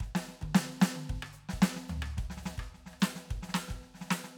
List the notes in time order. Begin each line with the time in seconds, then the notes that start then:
0.01 kick, snare
0.07 kick
0.16 snare
0.25 hi-hat pedal
0.29 snare
0.42 kick, high tom
0.55 snare
0.70 high tom
0.81 snare, hi-hat pedal
0.96 high tom
1.10 kick, mid tom
1.16 kick
1.23 cross-stick
1.34 hi-hat pedal
1.50 snare
1.54 kick
1.63 snare
1.77 snare
1.89 floor tom, hi-hat pedal
2.03 cross-stick
2.18 kick, snare
2.26 kick
2.31 snare
2.38 snare
2.44 snare, hi-hat pedal
2.59 kick, cross-stick
2.75 snare
2.80 snare
2.87 snare
2.94 cross-stick
3.01 snare, hi-hat pedal
3.16 snare
3.30 kick, snare
3.38 kick
3.43 snare
3.49 snare
3.55 snare, hi-hat pedal
3.69 kick, snare
3.76 kick
3.83 snare
3.89 snare
3.94 snare
4.02 snare
4.07 snare
4.11 snare, hi-hat pedal
4.25 snare